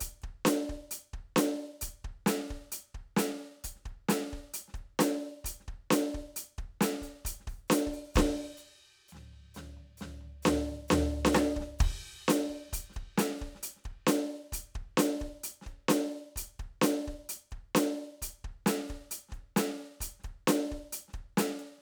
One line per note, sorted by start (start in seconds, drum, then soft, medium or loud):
0.01 closed hi-hat loud
0.01 kick soft
0.22 kick soft
0.22 closed hi-hat soft
0.46 closed hi-hat loud
0.46 snare loud
0.70 kick soft
0.91 closed hi-hat loud
1.14 kick soft
1.14 closed hi-hat soft
1.37 closed hi-hat loud
1.37 snare loud
1.82 closed hi-hat loud
1.82 kick soft
2.05 kick soft
2.05 closed hi-hat soft
2.27 closed hi-hat loud
2.27 snare loud
2.50 kick soft
2.50 closed hi-hat soft
2.72 closed hi-hat loud
2.95 kick soft
2.95 closed hi-hat soft
3.17 closed hi-hat loud
3.17 snare loud
3.39 closed hi-hat soft
3.64 closed hi-hat loud
3.64 kick soft
3.76 snare soft
3.86 kick soft
3.86 closed hi-hat soft
4.09 closed hi-hat loud
4.09 snare loud
4.31 kick soft
4.31 closed hi-hat soft
4.54 closed hi-hat loud
4.68 snare soft
4.74 kick soft
4.74 closed hi-hat soft
5.00 closed hi-hat loud
5.00 snare loud
5.21 closed hi-hat soft
5.45 closed hi-hat loud
5.45 kick soft
5.60 snare soft
5.68 kick soft
5.68 closed hi-hat soft
5.91 closed hi-hat loud
5.91 snare loud
6.13 kick soft
6.13 closed hi-hat soft
6.37 closed hi-hat loud
6.58 kick medium
6.58 closed hi-hat soft
6.81 closed hi-hat loud
6.81 snare loud
7.02 closed hi-hat soft
7.02 kick soft
7.25 closed hi-hat loud
7.25 kick medium
7.40 snare soft
7.48 open hi-hat soft
7.48 kick medium
7.68 open hi-hat loud
7.68 snare loud
7.68 hi-hat pedal soft
7.87 kick soft
7.93 open hi-hat medium
8.15 kick loud
8.15 snare loud
8.15 hi-hat pedal medium
8.15 crash medium
8.58 hi-hat pedal medium
9.09 hi-hat pedal soft
9.13 snare soft
9.13 floor tom soft
9.34 floor tom soft
9.55 snare soft
9.55 floor tom medium
9.55 hi-hat pedal medium
9.77 floor tom soft
9.98 snare medium
9.98 hi-hat pedal medium
10.02 floor tom medium
10.21 floor tom soft
10.43 snare loud
10.43 floor tom medium
10.43 hi-hat pedal medium
10.68 floor tom soft
10.89 snare loud
10.89 floor tom loud
10.89 hi-hat pedal medium
11.25 snare loud
11.33 snare loud
11.33 hi-hat pedal medium
11.57 kick medium
11.57 snare soft
11.79 kick loud
11.79 hi-hat pedal medium
11.79 crash medium
12.29 closed hi-hat loud
12.29 snare loud
12.49 kick soft
12.49 closed hi-hat soft
12.69 snare soft
12.73 closed hi-hat loud
12.73 kick medium
12.90 closed hi-hat soft
12.90 snare soft
12.97 kick medium
13.18 closed hi-hat loud
13.18 snare loud
13.39 kick soft
13.39 closed hi-hat soft
13.55 snare soft
13.63 closed hi-hat loud
13.77 snare soft
13.85 kick soft
13.85 closed hi-hat soft
14.07 closed hi-hat loud
14.07 snare loud
14.53 closed hi-hat loud
14.53 kick soft
14.75 kick medium
14.75 closed hi-hat soft
14.98 closed hi-hat loud
14.98 snare loud
15.21 kick soft
15.21 closed hi-hat soft
15.44 closed hi-hat loud
15.62 snare soft
15.67 kick soft
15.67 closed hi-hat soft
15.89 closed hi-hat loud
15.89 snare loud
16.12 closed hi-hat soft
16.36 closed hi-hat loud
16.36 kick soft
16.60 kick soft
16.60 closed hi-hat soft
16.82 closed hi-hat loud
16.82 snare loud
17.06 kick soft
17.06 closed hi-hat soft
17.30 closed hi-hat loud
17.52 kick soft
17.52 closed hi-hat soft
17.75 closed hi-hat loud
17.75 snare loud
17.98 closed hi-hat soft
18.22 closed hi-hat loud
18.22 kick soft
18.45 kick soft
18.67 closed hi-hat loud
18.67 snare loud
18.89 kick soft
18.89 closed hi-hat soft
19.12 closed hi-hat loud
19.29 kick soft
19.29 snare soft
19.34 closed hi-hat soft
19.57 closed hi-hat loud
19.57 snare loud
19.79 closed hi-hat soft
20.01 closed hi-hat loud
20.01 kick soft
20.20 snare soft
20.24 kick soft
20.24 closed hi-hat soft
20.48 closed hi-hat loud
20.48 snare loud
20.72 kick soft
20.72 closed hi-hat soft
20.93 closed hi-hat loud
21.09 snare soft
21.14 kick soft
21.14 closed hi-hat soft
21.38 closed hi-hat loud
21.38 snare loud
21.60 closed hi-hat soft
21.78 snare soft